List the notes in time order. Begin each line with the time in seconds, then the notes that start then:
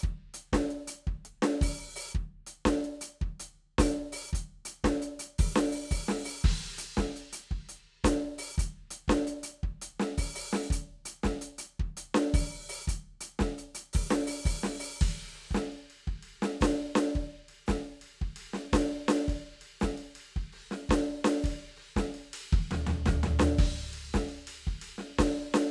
0.01 kick, hi-hat pedal
0.35 closed hi-hat
0.53 kick, snare
0.71 closed hi-hat
0.88 closed hi-hat
1.08 kick
1.26 closed hi-hat
1.43 snare
1.62 open hi-hat, kick
1.96 open hi-hat
2.12 kick, hi-hat pedal
2.47 closed hi-hat
2.66 kick, snare
2.85 closed hi-hat
3.02 closed hi-hat
3.22 kick
3.40 closed hi-hat
3.79 open hi-hat, kick, snare
4.13 open hi-hat
4.30 kick, hi-hat pedal
4.35 closed hi-hat
4.66 closed hi-hat
4.85 kick, snare
5.03 closed hi-hat
5.20 closed hi-hat
5.39 open hi-hat, kick
5.56 snare
5.72 open hi-hat
5.91 open hi-hat, kick
6.09 snare
6.25 open hi-hat
6.43 kick, hi-hat pedal, crash
6.79 closed hi-hat
6.98 kick, snare
7.17 closed hi-hat
7.33 closed hi-hat
7.52 kick
7.69 closed hi-hat
8.05 open hi-hat, kick, snare
8.39 open hi-hat
8.55 kick, hi-hat pedal
8.60 closed hi-hat
8.91 closed hi-hat
9.09 kick, snare
9.28 closed hi-hat
9.44 closed hi-hat
9.64 kick
9.82 closed hi-hat
10.00 snare
10.18 open hi-hat, kick
10.36 open hi-hat
10.53 snare
10.67 hi-hat pedal
10.71 closed hi-hat, kick
11.06 closed hi-hat
11.24 kick, snare
11.42 closed hi-hat
11.59 closed hi-hat
11.80 kick
11.98 closed hi-hat
12.15 snare
12.34 open hi-hat, kick
12.70 open hi-hat
12.85 closed hi-hat, kick, hi-hat pedal
13.21 closed hi-hat
13.40 kick, snare
13.59 closed hi-hat
13.75 closed hi-hat
13.94 open hi-hat, kick
14.11 snare
14.27 open hi-hat
14.46 open hi-hat, kick
14.64 snare
14.80 open hi-hat
15.02 kick, crash
15.35 crash
15.51 kick, snare, hi-hat pedal
15.73 crash
15.91 crash
16.08 kick
16.23 crash
16.43 snare
16.61 kick, snare, hi-hat pedal, crash
16.96 snare, crash
17.16 kick, crash
17.49 crash
17.67 kick, snare, hi-hat pedal
17.85 crash
18.02 crash
18.22 kick
18.37 crash
18.54 snare
18.73 kick, snare, hi-hat pedal, crash
19.09 snare, crash
19.29 kick, crash
19.62 crash
19.81 kick, snare, hi-hat pedal
19.98 crash
20.16 crash
20.37 kick
20.53 crash
20.72 snare
20.90 kick, snare, crash
21.25 snare, crash
21.42 kick, hi-hat pedal
21.46 crash
21.77 crash
21.97 kick, snare
22.15 crash
22.34 crash
22.53 kick
22.72 snare, floor tom
22.87 snare, floor tom
23.06 kick, snare, floor tom, hi-hat pedal
23.24 snare, floor tom
23.40 snare, floor tom
23.58 kick, hi-hat pedal, crash
23.94 crash
24.14 kick, snare, hi-hat pedal
24.29 crash
24.48 crash
24.68 kick
24.82 crash
24.99 snare
25.19 kick, snare, crash
25.55 snare, crash